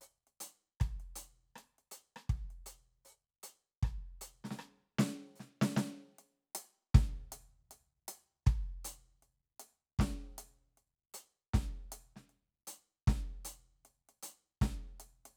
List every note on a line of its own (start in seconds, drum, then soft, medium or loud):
0.01 closed hi-hat soft
0.01 hi-hat pedal medium
0.27 closed hi-hat soft
0.40 closed hi-hat loud
0.80 kick medium
0.80 cross-stick medium
0.80 closed hi-hat soft
1.00 closed hi-hat soft
1.16 closed hi-hat medium
1.56 cross-stick medium
1.56 closed hi-hat soft
1.78 closed hi-hat soft
1.91 closed hi-hat medium
2.16 cross-stick medium
2.29 kick medium
2.29 closed hi-hat soft
2.50 closed hi-hat soft
2.66 open hi-hat medium
3.05 hi-hat pedal soft
3.43 closed hi-hat medium
3.83 kick medium
3.83 cross-stick medium
3.83 closed hi-hat soft
4.21 closed hi-hat medium
4.44 snare soft
4.51 snare soft
4.56 cross-stick medium
4.56 snare soft
4.99 snare loud
4.99 hi-hat pedal soft
5.36 hi-hat pedal soft
5.40 snare soft
5.61 snare loud
5.74 snare medium
5.74 hi-hat pedal soft
6.19 closed hi-hat soft
6.55 closed hi-hat loud
6.94 kick loud
6.94 snare medium
6.94 closed hi-hat soft
7.32 closed hi-hat medium
7.71 closed hi-hat medium
8.08 closed hi-hat medium
8.46 kick medium
8.46 cross-stick medium
8.46 closed hi-hat soft
8.85 closed hi-hat loud
9.22 closed hi-hat soft
9.60 closed hi-hat medium
9.99 kick medium
9.99 snare medium
9.99 closed hi-hat soft
10.38 closed hi-hat medium
10.77 closed hi-hat soft
11.14 closed hi-hat medium
11.54 kick medium
11.54 snare medium
11.54 closed hi-hat soft
11.92 closed hi-hat medium
12.16 snare soft
12.29 closed hi-hat soft
12.67 closed hi-hat medium
13.07 kick medium
13.07 snare medium
13.07 closed hi-hat soft
13.45 closed hi-hat loud
13.85 closed hi-hat soft
14.09 closed hi-hat soft
14.23 closed hi-hat loud
14.61 kick medium
14.61 snare medium
14.61 closed hi-hat soft
15.00 closed hi-hat medium
15.25 closed hi-hat soft